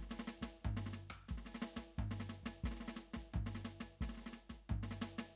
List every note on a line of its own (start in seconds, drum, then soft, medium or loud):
0.03 snare soft
0.09 snare soft
0.11 snare medium
0.19 snare soft
0.25 snare soft
0.25 hi-hat pedal soft
0.42 kick soft
0.42 snare medium
0.65 kick soft
0.65 floor tom medium
0.77 snare soft
0.86 snare soft
0.93 snare soft
0.97 hi-hat pedal soft
1.10 kick soft
1.10 cross-stick medium
1.29 kick soft
1.29 snare soft
1.38 snare soft
1.45 snare soft
1.55 snare soft
1.62 snare medium
1.62 hi-hat pedal soft
1.77 kick soft
1.77 snare soft
1.98 kick soft
1.98 floor tom medium
2.11 snare soft
2.20 snare soft
2.29 snare soft
2.29 hi-hat pedal soft
2.44 kick soft
2.44 snare medium
2.64 kick soft
2.64 snare soft
2.71 snare soft
2.77 snare soft
2.80 snare soft
2.88 snare soft
2.96 snare soft
2.96 hi-hat pedal medium
3.14 kick soft
3.14 snare soft
3.34 kick soft
3.34 floor tom medium
3.46 snare soft
3.55 snare soft
3.65 snare soft
3.65 hi-hat pedal medium
3.80 kick soft
3.80 snare soft
4.01 kick soft
4.01 snare soft
4.09 snare soft
4.14 snare soft
4.17 snare soft
4.26 snare soft
4.33 snare soft
4.33 hi-hat pedal soft
4.50 kick soft
4.50 snare soft
4.70 kick soft
4.70 floor tom medium
4.83 snare soft
4.91 snare soft
5.02 snare medium
5.02 hi-hat pedal medium
5.18 snare medium